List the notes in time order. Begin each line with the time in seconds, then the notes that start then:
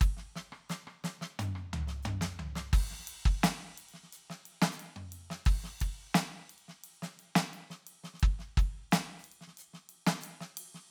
0.01 kick, ride
0.17 snare
0.36 snare
0.52 cross-stick
0.69 snare, hi-hat pedal
0.87 cross-stick
1.04 snare
1.21 snare
1.39 hi-hat pedal, high tom
1.55 cross-stick
1.73 mid tom
1.87 snare
2.03 hi-hat pedal, high tom
2.21 snare
2.39 mid tom
2.56 snare
2.73 kick, crash
2.91 snare
2.99 snare
3.07 ride
3.25 kick
3.43 snare, ride
3.78 ride
3.89 ride
3.94 snare
4.03 snare
4.12 hi-hat pedal, ride
4.30 snare
4.46 ride
4.62 snare
4.72 hi-hat pedal
4.80 ride
4.96 high tom
5.12 ride
5.30 snare
5.45 kick, crash
5.64 snare
5.81 kick, ride
6.14 snare, hi-hat pedal, ride
6.50 ride
6.58 ride
6.68 snare
6.84 ride
6.93 hi-hat pedal
7.02 snare
7.19 ride
7.36 snare
7.53 ride
7.70 snare
7.87 ride
8.04 snare
8.20 kick, ride
8.39 snare
8.57 kick, ride
8.91 snare, hi-hat pedal, ride
9.19 hi-hat pedal
9.24 ride
9.32 ride
9.41 snare
9.47 snare
9.57 hi-hat pedal, ride
9.73 snare
9.89 ride
10.07 snare
10.21 hi-hat pedal, ride
10.41 snare
10.57 ride
10.74 snare